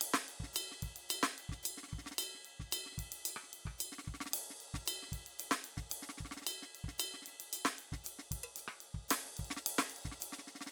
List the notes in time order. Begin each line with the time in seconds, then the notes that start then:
0.01 hi-hat pedal, ride
0.14 snare
0.28 ride
0.40 kick, snare
0.53 hi-hat pedal, ride bell
0.72 snare
0.80 kick, cross-stick, ride
0.86 snare
0.96 ride
1.09 hi-hat pedal, ride bell
1.23 snare
1.38 ride
1.49 kick, snare
1.63 hi-hat pedal, ride bell
1.77 snare
1.83 snare
1.88 snare
1.91 kick, snare
1.98 kick, snare
2.04 snare
2.06 snare
2.11 snare
2.18 hi-hat pedal, ride bell
2.34 snare
2.45 ride
2.60 kick, snare
2.71 hi-hat pedal, ride bell
2.86 snare
2.92 snare
2.97 kick, snare, ride
3.04 snare
3.08 snare
3.12 ride
3.25 hi-hat pedal, ride bell
3.36 cross-stick
3.43 snare
3.53 ride
3.65 kick, cross-stick
3.71 kick
3.78 hi-hat pedal, ride bell
3.92 snare
3.98 snare
4.04 snare
4.07 kick, snare
4.14 snare
4.20 snare
4.26 snare
4.31 snare, ride
4.35 hi-hat pedal
4.50 snare
4.60 ride
4.74 kick, snare
4.85 hi-hat pedal, ride bell
5.03 snare
5.08 kick, snare
5.12 snare, ride
5.19 snare
5.26 ride
5.39 hi-hat pedal, ride
5.51 snare
5.64 ride
5.77 kick, snare
5.90 hi-hat pedal, ride
6.02 snare
6.09 snare
6.17 kick, snare
6.25 snare
6.31 snare
6.37 snare
6.42 snare
6.47 hi-hat pedal, ride bell
6.62 snare
6.75 ride
6.84 kick
6.88 snare
6.98 hi-hat pedal, ride bell
7.14 snare
7.22 snare, ride
7.27 snare
7.33 snare
7.40 ride
7.53 hi-hat pedal, ride bell
7.65 snare
7.78 ride
7.92 kick, snare
8.04 hi-hat pedal, ride
8.19 snare
8.31 kick, ride
8.43 percussion
8.56 hi-hat pedal, ride
8.68 cross-stick
8.80 ride
8.94 kick
9.08 snare, hi-hat pedal, ride
9.26 snare
9.37 kick, ride
9.45 ride
9.50 snare
9.57 snare
9.66 hi-hat pedal, ride
9.78 snare
9.90 ride
9.96 ride
10.02 kick, snare, ride
10.11 snare
10.20 hi-hat pedal, ride
10.32 snare
10.39 snare
10.47 snare
10.55 snare
10.61 snare
10.66 snare